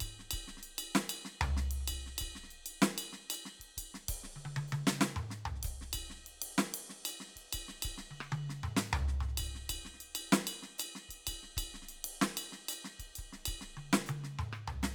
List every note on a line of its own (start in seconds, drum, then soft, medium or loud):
0.01 kick soft
0.01 ride bell loud
0.09 kick soft
0.11 kick soft
0.20 snare soft
0.31 kick soft
0.31 ride bell loud
0.40 kick soft
0.48 snare soft
0.58 snare soft
0.63 ride bell medium
0.79 ride bell loud
0.96 snare loud
1.08 hi-hat pedal soft
1.08 ride bell loud
1.25 snare soft
1.42 floor tom loud
1.57 snare medium
1.71 ride medium
1.81 cross-stick soft
1.88 kick soft
1.88 ride bell loud
2.07 snare soft
2.19 kick soft
2.19 ride bell loud
2.36 snare soft
2.44 snare soft
2.51 ride bell soft
2.66 ride bell medium
2.82 snare loud
2.98 ride bell loud
3.13 snare soft
3.31 hi-hat pedal medium
3.31 ride bell loud
3.46 snare soft
3.60 kick soft
3.60 ride medium
3.78 kick soft
3.78 ride bell medium
3.95 snare soft
4.09 kick soft
4.09 hi-hat pedal medium
4.09 ride loud
4.16 kick soft
4.24 snare soft
4.36 high tom medium
4.46 high tom medium
4.57 high tom medium
4.68 hi-hat pedal soft
4.73 high tom loud
4.88 snare loud
5.01 snare loud
5.01 hi-hat pedal soft
5.17 mid tom medium
5.31 snare soft
5.46 floor tom medium
5.55 snare soft
5.63 kick soft
5.63 hi-hat pedal medium
5.63 ride loud
5.74 kick soft
5.76 kick soft
5.82 snare soft
5.94 kick soft
5.94 ride bell loud
6.10 snare soft
6.16 snare soft
6.27 ride medium
6.42 ride loud
6.58 snare loud
6.75 ride loud
6.90 snare soft
7.06 hi-hat pedal medium
7.06 ride bell loud
7.21 snare soft
7.28 snare soft
7.36 kick soft
7.36 ride medium
7.53 kick soft
7.53 ride bell loud
7.69 snare soft
7.83 kick soft
7.83 ride bell loud
7.91 kick soft
7.98 snare soft
8.11 high tom medium
8.21 cross-stick medium
8.33 high tom loud
8.50 snare soft
8.64 mid tom medium
8.77 snare loud
8.87 hi-hat pedal soft
8.93 floor tom loud
9.08 snare soft
9.21 snare soft
9.21 mid tom medium
9.28 snare soft
9.38 kick soft
9.38 ride bell loud
9.44 hi-hat pedal soft
9.49 kick soft
9.55 snare soft
9.70 kick soft
9.70 ride bell loud
9.75 kick soft
9.85 snare soft
9.94 snare soft
10.01 ride bell medium
10.16 ride bell loud
10.33 snare loud
10.33 hi-hat pedal medium
10.48 ride bell loud
10.63 snare soft
10.79 hi-hat pedal medium
10.79 ride bell loud
10.96 snare soft
11.10 kick soft
11.10 ride bell medium
11.27 kick soft
11.27 ride bell loud
11.33 kick soft
11.43 snare soft
11.57 kick soft
11.57 ride bell loud
11.64 kick soft
11.75 snare soft
11.83 snare soft
11.89 snare soft
11.89 ride bell medium
11.95 snare soft
12.05 ride loud
12.22 snare loud
12.38 ride bell loud
12.53 snare soft
12.69 hi-hat pedal loud
12.69 ride bell loud
12.85 snare soft
13.00 kick soft
13.00 snare soft
13.00 ride bell soft
13.16 kick soft
13.16 ride bell medium
13.27 kick soft
13.33 snare soft
13.46 kick soft
13.46 ride bell loud
13.55 kick soft
13.62 snare soft
13.77 high tom medium
13.93 snare loud
14.07 hi-hat pedal medium
14.07 high tom loud
14.24 snare soft
14.39 mid tom medium
14.53 cross-stick medium
14.68 floor tom medium
14.83 snare loud